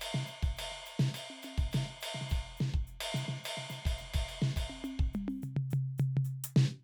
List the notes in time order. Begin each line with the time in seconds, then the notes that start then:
0.01 hi-hat pedal, ride
0.14 snare
0.27 hi-hat pedal, ride
0.43 kick, ride
0.57 hi-hat pedal, ride
0.72 snare
0.86 hi-hat pedal, ride
1.00 snare, ride
1.14 hi-hat pedal, ride
1.30 high tom
1.42 hi-hat pedal, high tom, ride
1.58 kick, ride
1.72 snare, hi-hat pedal, ride
1.89 snare
2.01 hi-hat pedal, ride
2.15 snare
2.21 snare
2.29 kick, hi-hat pedal, ride
2.57 snare, hi-hat pedal
2.74 kick
2.78 snare
2.87 hi-hat pedal
3.01 ride
3.14 snare, hi-hat pedal
3.28 snare
3.44 hi-hat pedal, ride
3.57 snare
3.70 snare, hi-hat pedal, ride
3.85 kick, ride
3.98 snare, hi-hat pedal
4.14 kick, ride
4.29 hi-hat pedal, ride
4.42 snare
4.56 kick, hi-hat pedal, ride
4.70 high tom
4.84 hi-hat pedal, high tom
4.99 kick
5.13 hi-hat pedal, mid tom
5.28 open hi-hat, high tom
5.42 floor tom, hi-hat pedal
5.57 floor tom
5.71 floor tom, hi-hat pedal
5.98 floor tom, hi-hat pedal
6.17 floor tom
6.25 hi-hat pedal
6.44 open hi-hat
6.56 snare